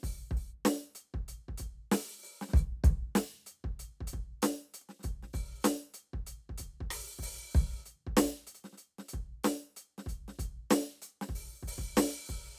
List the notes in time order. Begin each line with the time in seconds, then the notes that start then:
0.04 open hi-hat, kick
0.32 kick
0.38 open hi-hat
0.66 closed hi-hat, snare
0.96 closed hi-hat
1.15 kick
1.29 closed hi-hat
1.49 kick
1.58 closed hi-hat, kick
1.92 open hi-hat, snare
2.24 open hi-hat
2.31 open hi-hat
2.42 snare
2.50 snare
2.54 open hi-hat, kick
2.60 hi-hat pedal
2.84 kick, closed hi-hat
3.16 closed hi-hat, snare
3.47 closed hi-hat
3.65 kick
3.80 closed hi-hat
4.01 kick
4.08 closed hi-hat
4.14 kick
4.43 closed hi-hat, snare
4.74 closed hi-hat
4.82 closed hi-hat
4.90 snare
5.00 open hi-hat, snare
5.05 kick
5.23 snare
5.34 open hi-hat, kick
5.63 closed hi-hat, snare, hi-hat pedal
5.94 closed hi-hat
6.14 kick
6.27 closed hi-hat
6.50 kick
6.58 closed hi-hat, kick
6.81 kick
6.91 open hi-hat, cross-stick
7.19 open hi-hat, kick
7.31 kick
7.55 open hi-hat, kick
7.86 closed hi-hat
8.07 kick
8.18 closed hi-hat, snare
8.48 closed hi-hat
8.55 closed hi-hat
8.65 snare
8.73 snare
8.78 closed hi-hat
8.99 snare
9.09 open hi-hat
9.14 kick
9.44 open hi-hat, snare
9.49 hi-hat pedal
9.77 closed hi-hat
9.99 snare
10.07 closed hi-hat, kick
10.29 snare
10.39 closed hi-hat, kick
10.71 closed hi-hat, snare, hi-hat pedal
11.03 open hi-hat
11.22 snare
11.30 kick
11.36 open hi-hat
11.63 kick
11.68 open hi-hat
11.79 kick
11.98 open hi-hat, snare
12.29 open hi-hat, kick